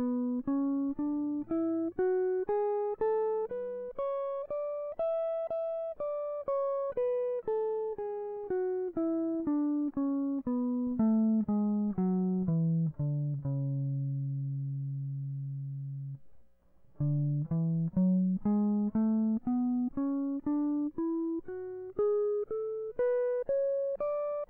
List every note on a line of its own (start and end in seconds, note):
0.00 0.44 B3
0.48 0.96 C#4
0.99 1.45 D4
1.52 1.91 E4
1.99 2.46 F#4
2.49 2.97 G#4
3.02 3.48 A4
3.51 3.95 B4
3.99 4.51 C#5
4.51 4.96 D5
5.00 5.50 E5
5.51 5.95 E5
6.01 6.46 D5
6.49 6.94 C#5
6.98 7.43 B4
7.48 7.96 A4
7.99 8.50 G#4
8.51 8.94 F#4
8.97 9.50 E4
9.48 9.92 D4
9.98 10.43 C#4
10.48 11.19 B3
11.01 11.46 A3
11.50 11.96 G#3
11.99 12.51 F#3
12.50 12.93 E3
13.02 13.46 D3
13.47 16.18 C#3
17.03 17.47 D3
17.53 17.92 E3
17.98 18.41 F#3
18.47 18.92 G#3
18.96 19.41 A3
19.48 19.92 B3
19.98 20.43 C#4
20.47 20.92 D4
20.99 21.43 E4
21.50 21.97 F#4
21.99 22.46 G#4
22.50 22.97 A4
23.00 23.46 B4
23.50 23.98 C#5
24.01 24.46 D5